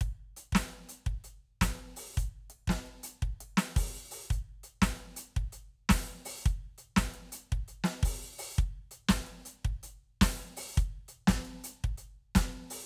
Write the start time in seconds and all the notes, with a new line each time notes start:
0.03 kick, closed hi-hat
0.37 closed hi-hat
0.52 kick, snare
0.71 closed hi-hat
0.89 closed hi-hat
1.06 kick
1.24 closed hi-hat
1.61 closed hi-hat, kick, snare
1.96 open hi-hat
2.14 closed hi-hat, kick, hi-hat pedal
2.50 closed hi-hat
2.68 kick, snare
2.86 closed hi-hat
3.03 closed hi-hat
3.22 kick
3.41 closed hi-hat
3.57 snare
3.76 open hi-hat, kick
4.11 open hi-hat
4.26 hi-hat pedal
4.30 closed hi-hat, kick
4.63 closed hi-hat
4.82 kick, snare
4.97 closed hi-hat
5.16 closed hi-hat
5.36 kick
5.52 closed hi-hat
5.89 open hi-hat, kick, snare
6.25 open hi-hat
6.42 kick, hi-hat pedal
6.47 closed hi-hat
6.78 closed hi-hat
6.96 kick, snare
7.14 closed hi-hat
7.32 closed hi-hat
7.52 kick
7.68 closed hi-hat
7.84 snare
8.03 open hi-hat, kick
8.39 open hi-hat
8.55 kick, hi-hat pedal
8.91 closed hi-hat
9.09 kick, snare
9.27 closed hi-hat
9.45 closed hi-hat
9.65 kick
9.83 closed hi-hat
10.21 open hi-hat, kick, snare
10.57 open hi-hat
10.75 closed hi-hat, kick, hi-hat pedal
11.08 closed hi-hat
11.27 kick, snare
11.45 closed hi-hat
11.64 closed hi-hat
11.84 kick
11.98 closed hi-hat
12.35 closed hi-hat, kick, snare
12.70 open hi-hat